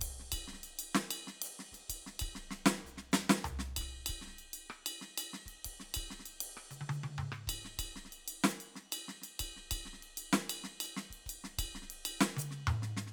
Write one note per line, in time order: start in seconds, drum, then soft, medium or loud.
0.01 kick soft
0.01 hi-hat pedal medium
0.01 ride loud
0.09 kick soft
0.11 kick soft
0.20 snare soft
0.32 kick soft
0.32 ride bell loud
0.39 kick soft
0.48 snare soft
0.53 snare soft
0.59 snare soft
0.63 snare soft
0.63 ride bell medium
0.79 ride bell loud
0.95 snare loud
1.11 ride bell loud
1.27 snare soft
1.42 hi-hat pedal medium
1.42 ride loud
1.59 snare soft
1.72 kick soft
1.72 snare soft
1.72 ride bell soft
1.79 snare soft
1.90 kick soft
1.90 hi-hat pedal soft
1.90 ride bell loud
2.07 snare soft
2.20 kick soft
2.20 ride bell loud
2.28 kick soft
2.35 snare soft
2.51 snare medium
2.66 snare loud
2.75 snare soft
2.84 floor tom soft
2.84 hi-hat pedal soft
2.98 snare soft
3.12 snare loud
3.12 hi-hat pedal soft
3.30 snare loud
3.36 snare soft
3.45 hi-hat pedal medium
3.45 floor tom medium
3.59 snare medium
3.77 kick soft
3.77 ride bell loud
3.82 cross-stick soft
4.06 kick soft
4.06 ride bell loud
4.21 snare soft
4.26 snare soft
4.30 snare soft
4.39 ride bell soft
4.54 ride bell medium
4.70 cross-stick medium
4.86 ride bell loud
5.01 snare soft
5.18 hi-hat pedal medium
5.18 ride bell loud
5.33 snare soft
5.45 kick soft
5.45 snare soft
5.45 ride medium
5.65 kick soft
5.65 ride loud
5.80 snare soft
5.94 kick soft
5.94 ride bell loud
6.02 kick soft
6.11 snare soft
6.20 snare soft
6.26 ride bell medium
6.41 ride loud
6.57 cross-stick medium
6.71 hi-hat pedal soft
6.71 high tom soft
6.81 high tom medium
6.89 hi-hat pedal soft
6.89 open hi-hat soft
6.89 high tom loud
7.04 high tom medium
7.18 mid tom medium
7.32 cross-stick medium
7.48 kick soft
7.48 ride bell loud
7.65 snare soft
7.79 kick soft
7.79 ride bell loud
7.85 kick soft
7.96 snare soft
8.05 snare soft
8.12 ride bell soft
8.28 ride bell medium
8.44 snare loud
8.48 hi-hat pedal medium
8.60 ride bell medium
8.76 snare soft
8.92 hi-hat pedal medium
8.92 ride bell loud
9.08 snare soft
9.22 snare soft
9.22 ride bell medium
9.40 kick soft
9.40 hi-hat pedal soft
9.40 ride bell loud
9.57 snare soft
9.71 kick soft
9.71 ride bell loud
9.80 kick soft
9.86 snare soft
9.93 snare soft
10.00 snare soft
10.00 ride soft
10.17 ride bell medium
10.33 snare loud
10.50 ride bell loud
10.64 snare medium
10.81 hi-hat pedal medium
10.81 ride bell loud
10.97 snare medium
11.10 kick soft
11.10 ride medium
11.26 kick soft
11.26 hi-hat pedal soft
11.26 ride bell medium
11.44 snare soft
11.59 kick soft
11.59 ride bell loud
11.65 kick soft
11.75 snare soft
11.82 snare soft
11.90 ride medium
12.05 ride bell loud
12.21 snare loud
12.37 hi-hat pedal loud
12.37 high tom loud
12.51 snare soft
12.67 mid tom loud
12.82 snare soft
12.97 snare medium